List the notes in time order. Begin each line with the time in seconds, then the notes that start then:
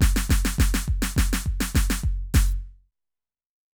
0.01 kick, snare, hi-hat pedal
0.16 snare
0.29 kick, snare, hi-hat pedal
0.45 snare
0.59 kick, snare
0.74 snare
0.88 kick
1.02 snare
1.17 kick, snare
1.33 snare
1.46 kick
1.61 snare
1.75 kick, snare
1.90 snare
2.04 kick, snare
2.34 open hi-hat, kick, snare
2.49 hi-hat pedal